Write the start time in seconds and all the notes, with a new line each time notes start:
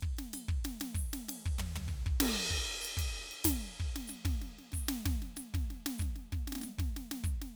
0.01 kick, ride bell
0.17 snare, ride
0.34 snare, hi-hat pedal, ride bell
0.49 kick
0.65 snare, ride
0.80 snare, ride
0.95 kick, hi-hat pedal
1.13 snare, ride
1.29 snare, ride
1.46 kick
1.59 floor tom, high tom
1.76 floor tom, high tom
1.88 kick, hi-hat pedal
2.06 kick
2.20 snare, ride
2.39 snare
2.50 kick, ride
2.69 snare
2.81 hi-hat pedal, ride
2.97 kick, ride
3.14 snare
3.31 ride
3.44 kick, snare, hi-hat pedal, ride
3.64 snare
3.80 kick
3.96 snare
4.08 snare, hi-hat pedal
4.25 kick, snare
4.42 snare
4.59 snare
4.72 kick, snare, hi-hat pedal
4.89 snare
5.06 kick, snare
5.22 snare
5.37 snare, hi-hat pedal
5.54 kick, snare
5.71 snare
5.86 snare
5.99 kick, snare, hi-hat pedal
6.16 snare
6.32 kick, snare
6.48 snare
6.52 snare
6.56 snare
6.59 snare
6.62 snare, hi-hat pedal
6.64 snare
6.79 kick, snare
6.97 snare
7.12 snare
7.24 kick, snare, hi-hat pedal
7.42 snare